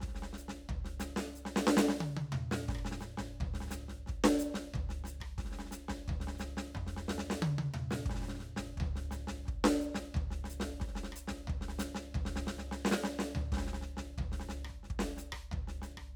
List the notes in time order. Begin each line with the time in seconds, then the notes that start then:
0.01 kick, snare
0.08 snare
0.14 snare
0.23 snare
0.33 snare
0.38 hi-hat pedal
0.49 kick, snare
0.69 kick, floor tom
0.85 snare
1.00 snare, hi-hat pedal
1.17 snare
1.34 snare, hi-hat pedal
1.46 snare
1.56 snare
1.67 snare
1.77 snare
1.89 snare
2.01 high tom
2.17 high tom
2.33 mid tom
2.52 snare
2.69 kick, snare
2.75 cross-stick
2.79 cross-stick
2.85 snare
2.92 snare
3.01 snare, hi-hat pedal
3.18 kick, snare
3.41 kick, floor tom
3.54 snare
3.61 snare
3.67 snare
3.71 snare, hi-hat pedal
3.89 kick, snare
4.07 kick, snare
4.24 snare
4.40 snare, hi-hat pedal
4.55 kick, snare
4.74 kick, floor tom
4.90 snare
5.04 snare, hi-hat pedal
5.21 kick, cross-stick
5.38 kick, snare
5.45 snare
5.50 snare
5.52 snare
5.59 snare
5.65 snare
5.72 snare, hi-hat pedal
5.89 kick, snare
6.08 kick, floor tom
6.21 snare
6.28 snare
6.35 snare
6.39 snare, hi-hat pedal
6.57 snare
6.75 kick, mid tom
6.87 snare
7.09 snare
7.19 snare
7.30 snare
7.43 high tom
7.59 high tom
7.74 mid tom
7.91 snare
8.06 kick, snare
8.15 snare
8.19 snare
8.22 snare
8.29 snare
8.34 snare
8.39 snare
8.57 kick, snare
8.78 kick, floor tom
8.96 snare
9.11 snare, hi-hat pedal
9.28 kick, snare
9.46 kick, snare
9.65 snare
9.79 snare, hi-hat pedal
9.95 kick, snare
10.15 kick, floor tom
10.31 snare
10.45 snare
10.50 hi-hat pedal
10.60 kick, snare
10.80 kick, snare
10.88 snare
10.94 snare
10.96 snare
11.04 snare
11.13 cross-stick, hi-hat pedal
11.28 kick, snare
11.48 kick, floor tom
11.62 snare
11.69 snare
11.79 snare, hi-hat pedal
11.95 snare
12.15 kick, floor tom
12.26 snare
12.36 snare
12.47 snare
12.59 snare
12.72 snare
12.85 snare
12.92 snare
13.04 snare
13.19 snare
13.35 floor tom
13.42 cross-stick
13.52 kick, snare
13.58 snare
13.62 snare
13.67 snare
13.74 snare
13.82 snare
13.97 kick, snare
14.18 kick, floor tom
14.32 snare
14.40 snare
14.49 snare, hi-hat pedal
14.65 cross-stick
14.70 kick
14.84 snare
14.90 kick
15.00 snare
15.17 snare, hi-hat pedal
15.33 kick, cross-stick
15.52 kick, floor tom
15.68 snare
15.82 snare, hi-hat pedal
15.97 kick, cross-stick